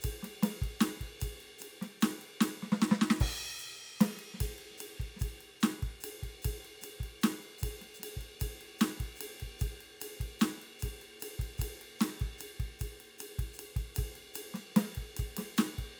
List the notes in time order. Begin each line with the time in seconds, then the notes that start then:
0.01 kick, hi-hat pedal, ride
0.23 snare, ride
0.43 snare, hi-hat pedal, ride
0.62 kick, ride
0.80 snare, hi-hat pedal, ride
1.01 kick, ride
1.20 kick, hi-hat pedal, ride
1.41 ride
1.59 snare, hi-hat pedal, ride
1.82 snare, ride
2.01 snare, hi-hat pedal, ride
2.21 ride
2.41 snare, hi-hat pedal, ride
2.62 snare
2.72 snare
2.81 snare, hi-hat pedal
2.91 snare
3.01 snare
3.10 snare
3.19 kick, hi-hat pedal, crash
3.58 hi-hat pedal
4.00 snare, hi-hat pedal, ride
4.19 ride
4.34 snare
4.38 kick, snare, ride
4.41 snare, hi-hat pedal
4.43 snare
4.49 snare
4.58 ride
4.71 snare
4.78 hi-hat pedal, ride
5.00 kick, ride
5.16 snare, hi-hat pedal
5.21 kick, ride
5.41 ride
5.61 snare, hi-hat pedal, ride
5.83 kick, ride
6.00 hi-hat pedal, ride
6.23 kick, ride
6.42 kick, hi-hat pedal, ride
6.65 ride
6.81 snare, hi-hat pedal, ride
7.00 kick, ride
7.22 snare, hi-hat pedal, ride
7.43 ride
7.58 snare, hi-hat pedal
7.63 kick, ride
7.81 snare, ride
7.94 hi-hat pedal
7.99 snare, ride
8.17 kick
8.21 ride
8.40 kick, hi-hat pedal, ride
8.61 ride
8.79 snare, hi-hat pedal, ride
9.00 kick, ride
9.16 hi-hat pedal
9.21 ride
9.40 kick, ride
9.59 kick, hi-hat pedal, ride
9.81 ride
10.00 hi-hat pedal, ride
10.20 kick, ride
10.39 snare, hi-hat pedal, ride
10.62 ride
10.79 kick, hi-hat pedal, ride
10.84 snare
11.02 ride
11.20 hi-hat pedal, ride
11.39 kick, ride
11.58 kick, hi-hat pedal, ride
11.81 ride
11.99 snare, hi-hat pedal, ride
12.20 kick, ride
12.38 hi-hat pedal, ride
12.60 kick, ride
12.79 kick, hi-hat pedal, ride
13.00 ride
13.19 hi-hat pedal, ride
13.39 kick, ride
13.54 hi-hat pedal
13.59 ride
13.76 kick, ride
13.95 kick, hi-hat pedal, ride
14.16 ride
14.34 hi-hat pedal, ride
14.54 snare, ride bell
14.76 snare, hi-hat pedal, ride
14.95 kick, ride
15.17 kick, hi-hat pedal, ride
15.37 snare, ride
15.57 snare, hi-hat pedal, ride
15.78 kick, ride